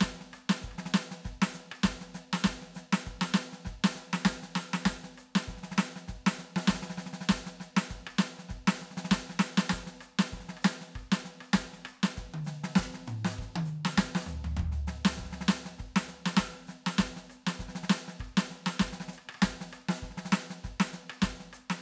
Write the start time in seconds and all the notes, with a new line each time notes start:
0.01 kick, snare
0.21 snare
0.33 cross-stick, hi-hat pedal
0.50 snare
0.62 kick, snare
0.71 cross-stick
0.78 snare
0.86 snare
0.94 snare, hi-hat pedal
1.11 snare
1.25 kick, snare
1.42 snare
1.53 snare, hi-hat pedal
1.72 cross-stick
1.84 kick, snare
2.01 snare
2.15 snare, hi-hat pedal
2.33 snare
2.44 kick, snare
2.62 snare
2.75 snare, hi-hat pedal
2.93 snare
3.06 kick, snare
3.21 snare
3.34 snare, hi-hat pedal
3.53 snare
3.65 kick, snare
3.84 snare
3.89 cross-stick
3.96 snare, hi-hat pedal
4.13 snare
4.25 kick, snare
4.43 snare
4.56 snare, hi-hat pedal
4.74 snare
4.86 kick, snare
5.04 snare
5.18 cross-stick, hi-hat pedal
5.35 snare
5.48 kick, snare
5.57 snare
5.63 snare
5.72 snare
5.77 snare, hi-hat pedal
5.96 snare
6.08 kick, snare
6.27 snare
6.38 snare, hi-hat pedal
6.56 snare
6.68 kick, snare
6.75 snare
6.83 snare
6.90 snare
6.98 snare, hi-hat pedal
7.06 snare
7.13 snare
7.21 snare
7.29 kick, snare
7.46 snare
7.60 snare, hi-hat pedal
7.77 snare
7.90 kick, snare
8.07 cross-stick
8.19 snare, hi-hat pedal
8.39 snare
8.51 kick
8.68 snare
8.79 snare, hi-hat pedal
8.91 snare
8.97 snare
9.05 snare
9.11 kick, snare
9.30 snare
9.40 snare, hi-hat pedal
9.58 snare
9.70 kick, snare
9.87 snare
10.01 cross-stick, hi-hat pedal
10.19 snare
10.33 kick, snare
10.40 snare
10.45 snare
10.49 snare
10.57 cross-stick
10.62 snare, hi-hat pedal
10.81 snare
10.95 kick, cross-stick
11.12 snare
11.22 snare, hi-hat pedal
11.41 cross-stick
11.54 kick, snare
11.73 snare
11.85 cross-stick, hi-hat pedal
12.03 snare
12.17 kick, snare
12.34 high tom
12.45 snare, hi-hat pedal
12.64 snare
12.76 kick, snare
12.94 snare
13.07 hi-hat pedal, mid tom
13.25 snare
13.39 kick, snare
13.56 high tom
13.66 snare, hi-hat pedal
13.85 snare
13.98 kick, snare
14.15 snare
14.27 floor tom, hi-hat pedal
14.45 floor tom
14.57 kick, floor tom
14.72 snare
14.87 snare, hi-hat pedal
15.05 snare
15.17 kick, snare
15.25 snare
15.30 snare
15.33 snare
15.41 snare
15.48 snare, hi-hat pedal
15.66 snare
15.79 kick, snare
15.96 snare
16.02 cross-stick
16.08 snare, hi-hat pedal
16.26 snare
16.37 kick, snare
16.53 snare
16.68 snare, hi-hat pedal
16.87 snare
16.99 kick, snare
17.17 snare
17.30 cross-stick, hi-hat pedal
17.47 snare
17.59 kick, snare
17.69 snare
17.75 snare
17.83 snare
17.89 snare, hi-hat pedal
18.08 snare
18.20 kick, cross-stick
18.37 snare
18.47 hi-hat pedal
18.51 snare
18.66 snare
18.80 kick, snare
18.93 snare
19.00 snare
19.08 snare
19.13 hi-hat pedal
19.18 cross-stick
19.29 cross-stick
19.35 cross-stick
19.37 cross-stick
19.42 kick, snare
19.61 snare
19.72 cross-stick, hi-hat pedal
19.89 snare
20.03 kick, snare
20.11 snare
20.16 snare
20.25 snare
20.32 snare, hi-hat pedal
20.50 snare
20.64 kick, snare
20.80 snare
20.93 snare, hi-hat pedal
21.10 cross-stick
21.22 kick, snare
21.40 snare
21.53 cross-stick, hi-hat pedal
21.70 snare